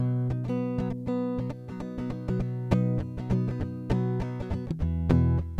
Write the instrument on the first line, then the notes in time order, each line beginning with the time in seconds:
acoustic guitar
0.01 B2 F#3
0.31 B2 F#3 B3 D#4
0.45 F#3 D#4
0.51 B3
0.80 B2 F#3
0.92 F#3 B3
1.07 F#3 B3 D#4
1.40 B2 F#3 B3
1.51 F#3 B3 D#4
1.70 B2 F#3
1.81 F#3 B3 D#4
1.89 B3
1.99 B2 F#3 B3
2.11 B2 F#3 B3 D#4
2.29 B2 F#3 B3
2.41 B2 F#3 B3
2.72 B2 F#3 B3 D#4
3.00 B2 B3
3.19 B2 F#3 B3
3.31 B2 F#3 B3 D#4
3.48 B3 D#4
3.62 B2 G3
3.91 B2 F#3 B3 D#4
4.21 B2 F#3 B3 D#4
4.41 F#3 B3
4.53 F#3 B3
4.72 E3
4.80 E2 B2 E3
5.11 E2 B2 E3